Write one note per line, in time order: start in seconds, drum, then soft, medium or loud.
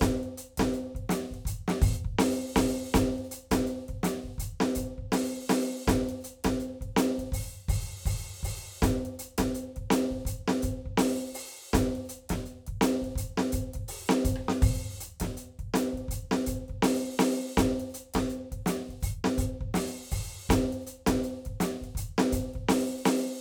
0.01 open hi-hat loud
0.01 kick medium
0.01 snare loud
0.01 hi-hat pedal soft
0.23 closed hi-hat soft
0.38 closed hi-hat loud
0.58 kick medium
0.58 snare loud
0.58 closed hi-hat medium
0.73 closed hi-hat medium
0.95 kick medium
0.95 closed hi-hat soft
1.09 closed hi-hat loud
1.09 snare loud
1.31 kick soft
1.31 closed hi-hat soft
1.45 closed hi-hat loud
1.45 kick medium
1.68 snare loud
1.82 open hi-hat loud
1.82 kick loud
1.93 hi-hat pedal soft
2.05 kick medium
2.15 kick soft
2.15 snare loud
2.20 open hi-hat loud
2.56 open hi-hat loud
2.56 kick medium
2.56 snare loud
2.94 closed hi-hat loud
2.94 kick medium
2.94 snare loud
2.94 hi-hat pedal medium
3.18 closed hi-hat soft
3.24 hi-hat pedal soft
3.31 closed hi-hat loud
3.51 closed hi-hat loud
3.51 kick medium
3.51 snare loud
3.67 closed hi-hat medium
3.88 kick medium
3.88 closed hi-hat soft
4.03 closed hi-hat loud
4.03 snare loud
4.24 kick soft
4.38 closed hi-hat loud
4.38 kick medium
4.60 snare loud
4.75 closed hi-hat loud
4.75 kick medium
4.98 kick soft
5.12 open hi-hat loud
5.12 snare loud
5.48 open hi-hat loud
5.48 kick soft
5.48 snare loud
5.87 open hi-hat loud
5.87 kick medium
5.87 snare loud
5.87 hi-hat pedal soft
6.09 closed hi-hat medium
6.21 open hi-hat loud
6.21 hi-hat pedal soft
6.44 kick medium
6.44 snare loud
6.44 closed hi-hat medium
6.60 closed hi-hat medium
6.81 kick medium
6.81 closed hi-hat soft
6.97 closed hi-hat loud
6.97 snare loud
7.18 kick soft
7.18 closed hi-hat medium
7.32 open hi-hat loud
7.32 kick medium
7.69 open hi-hat loud
7.69 kick loud
8.06 open hi-hat loud
8.06 kick medium
8.43 open hi-hat loud
8.43 kick medium
8.82 closed hi-hat loud
8.82 kick loud
8.82 snare loud
8.82 hi-hat pedal soft
9.05 closed hi-hat medium
9.13 hi-hat pedal soft
9.19 closed hi-hat loud
9.38 kick medium
9.38 snare loud
9.38 closed hi-hat loud
9.55 closed hi-hat medium
9.76 kick medium
9.76 closed hi-hat soft
9.91 closed hi-hat loud
9.91 snare loud
10.11 kick soft
10.25 closed hi-hat loud
10.25 kick medium
10.48 snare loud
10.62 closed hi-hat loud
10.62 kick medium
10.86 kick soft
10.98 open hi-hat loud
10.98 snare loud
11.32 open hi-hat loud
11.32 kick soft
11.73 closed hi-hat loud
11.73 kick medium
11.73 snare loud
11.73 hi-hat pedal soft
11.95 closed hi-hat soft
12.05 hi-hat pedal soft
12.09 closed hi-hat loud
12.29 kick medium
12.29 snare loud
12.29 closed hi-hat loud
12.46 closed hi-hat medium
12.67 kick medium
12.67 closed hi-hat medium
12.81 closed hi-hat loud
12.81 snare loud
13.02 kick soft
13.02 closed hi-hat soft
13.16 closed hi-hat loud
13.16 kick medium
13.38 snare loud
13.52 closed hi-hat loud
13.52 kick medium
13.74 kick medium
13.74 closed hi-hat medium
13.88 open hi-hat loud
14.07 snare loud
14.07 hi-hat pedal soft
14.25 open hi-hat loud
14.25 kick medium
14.36 cross-stick medium
14.36 hi-hat pedal soft
14.49 snare loud
14.62 open hi-hat loud
14.62 kick loud
14.99 closed hi-hat loud
14.99 hi-hat pedal soft
15.20 kick medium
15.20 snare loud
15.20 closed hi-hat loud
15.37 closed hi-hat medium
15.59 kick soft
15.59 closed hi-hat soft
15.74 closed hi-hat loud
15.74 snare loud
15.93 kick soft
15.98 closed hi-hat soft
16.08 closed hi-hat loud
16.08 kick medium
16.31 snare loud
16.46 closed hi-hat loud
16.46 kick medium
16.68 kick soft
16.68 closed hi-hat soft
16.83 open hi-hat loud
16.83 snare loud
17.18 open hi-hat loud
17.18 kick soft
17.18 snare loud
17.57 open hi-hat loud
17.57 kick medium
17.57 snare loud
17.57 hi-hat pedal soft
17.80 closed hi-hat medium
17.90 hi-hat pedal soft
17.94 closed hi-hat loud
18.14 kick medium
18.14 snare loud
18.14 closed hi-hat medium
18.30 closed hi-hat medium
18.52 kick medium
18.52 closed hi-hat medium
18.66 closed hi-hat loud
18.66 snare loud
18.89 kick soft
18.89 closed hi-hat soft
19.01 open hi-hat loud
19.01 kick medium
19.01 hi-hat pedal soft
19.24 snare loud
19.38 open hi-hat loud
19.38 kick medium
19.38 hi-hat pedal soft
19.61 kick medium
19.69 kick soft
19.74 open hi-hat loud
19.74 snare loud
20.11 open hi-hat loud
20.11 kick medium
20.49 closed hi-hat loud
20.49 kick medium
20.49 snare loud
20.49 hi-hat pedal soft
20.73 closed hi-hat medium
20.82 hi-hat pedal soft
20.87 closed hi-hat loud
21.07 kick medium
21.07 snare loud
21.07 closed hi-hat loud
21.23 closed hi-hat medium
21.45 kick medium
21.45 closed hi-hat medium
21.60 closed hi-hat loud
21.60 snare loud
21.82 kick soft
21.82 closed hi-hat soft
21.95 closed hi-hat loud
21.95 kick medium
22.18 snare loud
22.32 closed hi-hat loud
22.32 kick medium
22.54 kick medium
22.54 closed hi-hat soft
22.69 open hi-hat loud
22.69 snare loud
23.05 open hi-hat loud
23.05 snare loud